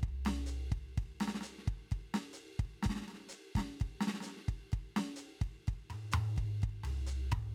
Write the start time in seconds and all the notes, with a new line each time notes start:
0.01 kick, ride
0.08 kick
0.26 snare, ride
0.47 hi-hat pedal, ride
0.72 kick, ride
0.78 kick
0.98 kick, ride
1.03 kick
1.21 snare, ride
1.28 snare
1.35 snare
1.41 snare, hi-hat pedal
1.47 snare
1.52 snare
1.59 snare
1.65 kick, snare, ride
1.72 snare
1.78 snare
1.83 snare
1.86 snare
1.89 kick, snare, ride
2.15 snare, ride
2.34 hi-hat pedal
2.38 ride
2.60 kick, ride
2.65 kick
2.83 kick, snare, ride
2.90 kick, snare
2.96 snare
3.02 snare
3.08 snare, ride
3.14 snare
3.21 snare
3.27 snare, hi-hat pedal
3.33 snare, ride
3.56 kick, snare, ride
3.61 kick
3.81 kick, ride
3.87 kick
4.01 snare, ride
4.08 snare
4.14 snare
4.21 snare, hi-hat pedal, ride
4.27 snare
4.32 snare
4.37 snare
4.43 snare
4.48 kick, snare, ride
4.52 snare
4.56 snare
4.59 snare
4.63 snare
4.73 kick, ride
4.97 snare, ride
5.16 hi-hat pedal
5.21 ride
5.42 kick, ride
5.47 kick
5.68 kick, ride
5.74 kick
5.90 mid tom, ride
6.12 hi-hat pedal, mid tom, ride
6.37 kick, ride
6.44 kick
6.63 kick, ride
6.69 kick
6.84 floor tom, ride
7.07 hi-hat pedal, ride
7.32 kick, mid tom, ride
7.38 kick